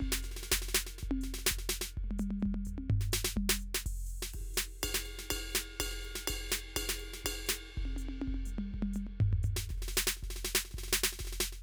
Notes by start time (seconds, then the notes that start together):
0.01 kick, high tom
0.09 kick
0.13 kick, snare
0.24 snare, hi-hat pedal
0.32 snare
0.37 snare
0.44 snare
0.52 kick, snare
0.63 snare
0.69 snare
0.75 snare, hi-hat pedal
0.87 snare
0.99 snare
1.04 kick
1.10 kick, high tom
1.22 snare, hi-hat pedal
1.35 snare
1.39 snare
1.47 snare
1.52 kick
1.58 kick, snare
1.70 snare, hi-hat pedal
1.82 snare
1.98 kick
2.04 kick, mid tom
2.12 mid tom
2.20 hi-hat pedal, mid tom
2.31 mid tom
2.41 hi-hat pedal, mid tom
2.46 kick
2.53 kick, mid tom
2.66 floor tom, hi-hat pedal
2.79 high tom
2.91 kick, floor tom
2.99 kick, snare
3.13 snare, hi-hat pedal
3.25 snare
3.37 kick, mid tom
3.44 kick
3.50 snare
3.60 hi-hat pedal
3.75 snare
3.87 kick, crash
4.07 hi-hat pedal
4.23 snare
4.35 kick, ride, floor tom
4.42 kick
4.55 snare, hi-hat pedal
4.84 kick, ride bell
4.91 kick, snare
5.04 hi-hat pedal, ride
5.20 snare
5.31 kick, ride bell
5.38 kick
5.51 hi-hat pedal
5.56 snare
5.81 kick, ride bell
5.87 kick
5.92 snare
6.02 hi-hat pedal, ride
6.16 snare
6.28 kick, ride bell
6.36 kick
6.50 snare, hi-hat pedal
6.77 kick, ride bell
6.83 kick
6.90 snare
6.98 hi-hat pedal, ride
7.14 snare
7.26 kick, ride bell
7.31 kick
7.47 snare, hi-hat pedal
7.78 kick
7.84 kick, high tom
7.89 kick
7.97 hi-hat pedal, high tom
8.09 high tom
8.22 high tom
8.28 kick
8.35 kick, high tom
8.46 hi-hat pedal, mid tom
8.59 mid tom
8.72 kick, mid tom
8.82 kick, mid tom
8.94 hi-hat pedal, mid tom
9.08 mid tom
9.21 kick, floor tom
9.30 kick, floor tom
9.44 hi-hat pedal, floor tom
9.57 snare
9.70 kick, snare
9.75 kick, snare
9.78 snare
9.83 snare
9.89 snare
9.94 snare, hi-hat pedal
10.08 snare
10.18 snare
10.24 kick, snare
10.31 snare
10.37 snare
10.45 snare, hi-hat pedal
10.56 snare
10.66 snare
10.72 kick, snare
10.78 kick, snare
10.84 snare
10.89 snare
10.94 snare, hi-hat pedal
11.04 snare
11.13 snare
11.20 kick, snare
11.26 kick, snare
11.28 snare
11.33 snare
11.41 snare, hi-hat pedal
11.53 snare